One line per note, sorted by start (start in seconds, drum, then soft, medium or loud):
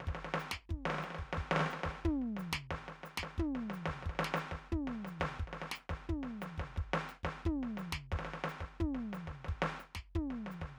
0.01 snare soft
0.08 kick soft
0.08 snare soft
0.15 snare soft
0.25 snare soft
0.35 snare medium
0.40 hi-hat pedal medium
0.52 kick soft
0.52 snare medium
0.69 kick soft
0.69 floor tom soft
0.86 snare medium
0.91 snare medium
0.95 snare soft
0.99 snare medium
0.99 hi-hat pedal soft
1.04 snare soft
1.11 snare soft
1.15 kick soft
1.15 snare soft
1.20 snare soft
1.29 snare soft
1.33 snare medium
1.38 kick soft
1.52 snare medium
1.57 snare medium
1.60 snare medium
1.71 snare soft
1.71 hi-hat pedal soft
1.80 snare soft
1.84 kick soft
1.84 snare medium
1.91 snare soft
1.96 snare soft
2.00 snare soft
2.05 kick soft
2.05 snare soft
2.05 floor tom medium
2.22 snare soft
2.37 snare soft
2.37 hi-hat pedal medium
2.53 kick soft
2.53 snare loud
2.71 kick soft
2.71 snare medium
2.89 snare soft
3.04 snare soft
3.04 hi-hat pedal medium
3.18 kick soft
3.18 snare medium
3.24 snare soft
3.39 kick soft
3.39 floor tom medium
3.56 snare soft
3.71 snare soft
3.71 hi-hat pedal medium
3.86 kick soft
3.86 snare medium
4.03 kick soft
4.03 snare soft
4.10 snare soft
4.16 snare soft
4.20 snare medium
4.25 snare medium
4.35 snare medium
4.35 hi-hat pedal medium
4.52 kick soft
4.52 snare soft
4.72 kick soft
4.72 floor tom medium
4.88 snare soft
5.05 snare soft
5.05 hi-hat pedal medium
5.21 kick soft
5.21 snare medium
5.40 kick soft
5.40 snare soft
5.48 snare soft
5.54 snare soft
5.62 snare soft
5.72 snare medium
5.72 hi-hat pedal medium
5.90 kick soft
5.90 snare soft
6.09 kick soft
6.09 floor tom medium
6.24 snare soft
6.42 snare soft
6.42 hi-hat pedal medium
6.58 kick soft
6.58 snare soft
6.77 kick soft
6.77 snare soft
6.94 snare medium
7.09 snare soft
7.09 hi-hat pedal medium
7.24 kick soft
7.24 snare medium
7.46 kick soft
7.46 floor tom medium
7.64 snare soft
7.78 snare soft
7.78 hi-hat pedal medium
7.93 kick soft
7.93 snare medium
8.12 kick soft
8.12 snare soft
8.20 snare soft
8.25 snare soft
8.34 snare soft
8.45 snare medium
8.49 hi-hat pedal medium
8.61 kick soft
8.61 snare soft
8.80 kick soft
8.80 floor tom medium
8.95 snare soft
9.14 snare soft
9.14 hi-hat pedal medium
9.28 kick soft
9.28 snare soft
9.45 kick soft
9.45 snare soft
9.63 snare medium
9.80 snare soft
9.80 hi-hat pedal medium
9.96 kick soft
9.96 snare soft
10.15 kick soft
10.15 floor tom medium
10.31 snare soft
10.47 snare soft
10.51 hi-hat pedal soft
10.62 kick soft
10.62 snare soft